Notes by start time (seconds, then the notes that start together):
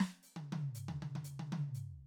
0.00 snare
0.23 hi-hat pedal
0.37 closed hi-hat, high tom
0.53 high tom
0.75 hi-hat pedal
0.89 closed hi-hat, high tom
1.02 high tom
1.16 high tom
1.25 hi-hat pedal
1.40 high tom
1.52 high tom
1.75 hi-hat pedal